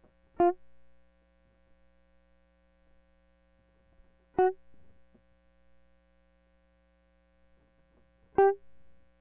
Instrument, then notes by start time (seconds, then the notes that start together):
electric guitar
0.40 F4
4.39 F#4
8.38 G4